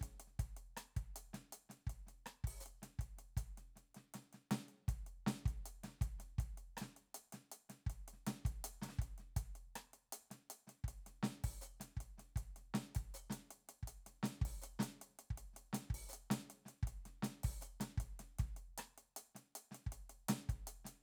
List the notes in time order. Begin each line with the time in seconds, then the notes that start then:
0.01 kick, closed hi-hat
0.20 closed hi-hat
0.27 snare
0.39 kick, closed hi-hat
0.57 closed hi-hat
0.77 cross-stick, closed hi-hat
0.96 kick, closed hi-hat
1.16 closed hi-hat
1.33 snare, closed hi-hat
1.52 closed hi-hat
1.69 snare, closed hi-hat
1.87 kick, closed hi-hat
2.06 snare, closed hi-hat
2.26 cross-stick, closed hi-hat
2.44 kick, open hi-hat
2.60 hi-hat pedal
2.66 closed hi-hat
2.82 snare, closed hi-hat
2.99 kick, closed hi-hat
3.17 snare, closed hi-hat
3.37 kick, closed hi-hat
3.57 snare, closed hi-hat
3.76 snare, closed hi-hat
3.95 snare, closed hi-hat
4.14 snare, closed hi-hat
4.33 snare, closed hi-hat
4.51 snare, closed hi-hat
4.68 closed hi-hat
4.88 kick, closed hi-hat
5.06 closed hi-hat
5.26 snare, closed hi-hat
5.45 kick, closed hi-hat
5.66 closed hi-hat
5.83 snare, closed hi-hat
5.87 snare
5.99 kick, snare, closed hi-hat
6.19 snare, closed hi-hat
6.38 kick, closed hi-hat
6.57 closed hi-hat
6.77 cross-stick, closed hi-hat
6.81 snare
6.96 closed hi-hat
7.14 closed hi-hat
7.32 snare, closed hi-hat
7.52 closed hi-hat
7.69 snare, closed hi-hat
7.86 kick, closed hi-hat
8.08 closed hi-hat
8.13 snare
8.27 snare, closed hi-hat
8.45 kick, closed hi-hat
8.64 closed hi-hat
8.82 snare, closed hi-hat
8.85 snare
8.88 snare
8.99 kick, closed hi-hat
9.18 snare, closed hi-hat
9.36 kick, closed hi-hat
9.55 closed hi-hat
9.75 cross-stick, closed hi-hat
9.93 closed hi-hat
10.12 closed hi-hat
10.30 snare, closed hi-hat
10.50 closed hi-hat
10.67 snare, closed hi-hat
10.84 kick
10.88 closed hi-hat
11.06 snare, closed hi-hat
11.23 snare, closed hi-hat
11.44 kick, open hi-hat
11.61 closed hi-hat, hi-hat pedal
11.80 snare, closed hi-hat
11.97 kick, closed hi-hat
12.18 snare, closed hi-hat
12.36 kick, closed hi-hat
12.56 snare, closed hi-hat
12.74 snare, closed hi-hat
12.95 kick, open hi-hat
13.14 hi-hat pedal
13.30 snare, closed hi-hat
13.51 closed hi-hat
13.67 snare, closed hi-hat
13.83 kick
13.87 closed hi-hat
14.06 snare, closed hi-hat
14.23 snare, closed hi-hat
14.41 kick, open hi-hat
14.62 closed hi-hat, hi-hat pedal
14.79 snare, closed hi-hat
15.01 closed hi-hat
15.19 closed hi-hat
15.30 kick
15.38 closed hi-hat
15.53 snare, closed hi-hat
15.73 snare, closed hi-hat
15.90 kick
15.94 open hi-hat
16.09 hi-hat pedal
16.13 closed hi-hat
16.30 snare, closed hi-hat
16.50 closed hi-hat
16.65 snare, closed hi-hat
16.83 kick
16.87 closed hi-hat
17.05 snare, closed hi-hat
17.22 snare, closed hi-hat
17.43 kick, open hi-hat
17.61 closed hi-hat, hi-hat pedal
17.80 snare, closed hi-hat
17.98 kick, closed hi-hat
18.19 snare, closed hi-hat
18.39 kick, snare, closed hi-hat
18.56 closed hi-hat
18.78 cross-stick, closed hi-hat
18.98 closed hi-hat
19.16 closed hi-hat
19.35 snare, closed hi-hat
19.55 closed hi-hat
19.71 snare, closed hi-hat
19.86 kick
19.92 closed hi-hat
20.10 closed hi-hat
20.28 snare, closed hi-hat
20.49 kick, closed hi-hat
20.67 closed hi-hat
20.85 snare, closed hi-hat